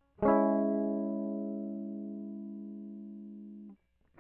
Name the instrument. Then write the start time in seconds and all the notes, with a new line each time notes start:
electric guitar
0.23 G#3 C#4
0.28 E4